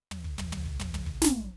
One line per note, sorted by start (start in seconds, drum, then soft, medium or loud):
0.11 floor tom medium
0.11 high tom medium
0.24 kick soft
0.38 floor tom loud
0.38 high tom medium
0.52 floor tom medium
0.52 high tom medium
0.66 kick soft
0.80 floor tom loud
0.80 high tom medium
0.94 floor tom medium
0.94 high tom medium
1.06 kick soft
1.22 snare loud
1.24 snare loud